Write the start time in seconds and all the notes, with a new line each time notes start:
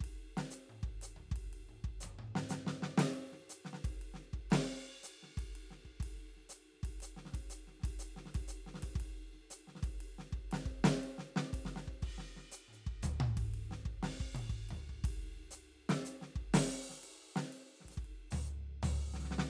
0.01 kick, ride
0.38 snare, ride
0.51 hi-hat pedal, ride
0.70 high tom
0.83 kick
1.02 hi-hat pedal, ride
1.17 floor tom
1.32 kick
1.36 ride
1.54 ride
1.69 high tom
1.85 kick
2.01 hi-hat pedal, floor tom
2.19 high tom
2.36 snare
2.50 snare, hi-hat pedal
2.67 snare
2.83 snare
2.98 snare, ride
3.32 snare
3.41 snare
3.50 hi-hat pedal, ride
3.65 snare
3.74 snare
3.85 kick, ride
4.02 ride
4.14 snare
4.34 kick
4.51 snare, crash
5.04 hi-hat pedal, ride
5.23 snare
5.38 kick, ride
5.56 ride
5.71 snare
5.85 kick
6.01 kick, ride
6.17 snare
6.37 snare
6.50 hi-hat pedal, ride
6.73 snare
6.84 kick, ride
7.01 hi-hat pedal, ride
7.17 snare
7.26 snare
7.32 kick, snare, ride
7.51 hi-hat pedal, ride
7.68 snare
7.80 kick, snare
7.86 ride
8.00 hi-hat pedal, ride
8.17 snare
8.26 snare
8.35 kick, ride
8.48 hi-hat pedal, ride
8.67 snare
8.75 snare
8.83 kick, ride
8.96 kick
9.01 ride
9.34 snare
9.51 hi-hat pedal, ride
9.68 snare
9.76 snare
9.83 kick, ride
10.01 ride
10.19 snare
10.33 kick
10.52 snare, ride
10.66 kick
10.85 snare, ride
11.04 ride
11.19 snare
11.37 snare
11.53 kick, ride
11.66 snare
11.77 snare
11.88 kick
12.03 kick, crash
12.19 snare
12.37 snare
12.52 hi-hat pedal, ride
12.69 high tom
12.73 hi-hat pedal
12.87 kick
13.03 floor tom, hi-hat pedal
13.12 closed hi-hat
13.14 closed hi-hat
13.21 high tom
13.37 kick, ride
13.54 ride
13.72 snare
13.86 kick
14.03 snare, crash
14.21 kick
14.35 high tom, ride
14.50 kick
14.70 floor tom, ride
14.90 kick
15.04 kick, ride
15.24 kick
15.51 hi-hat pedal
15.55 ride
15.90 snare, ride
16.06 hi-hat pedal, ride
16.22 snare
16.36 kick
16.54 open hi-hat, snare
16.90 snare
17.04 ride
17.36 snare, ride
17.53 ride
17.81 snare
17.85 kick, ride
17.90 snare, hi-hat pedal
17.98 kick
18.05 ride
18.31 open hi-hat, floor tom
18.46 hi-hat pedal
18.83 open hi-hat, floor tom
19.14 snare
19.20 snare
19.25 snare
19.31 snare
19.39 snare